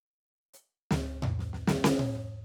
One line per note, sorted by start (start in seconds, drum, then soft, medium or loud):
0.54 hi-hat pedal medium
0.91 snare loud
0.91 floor tom loud
1.22 mid tom loud
1.22 high tom loud
1.39 snare soft
1.53 snare soft
1.68 snare loud
1.84 snare loud
1.99 high tom loud
2.15 mid tom medium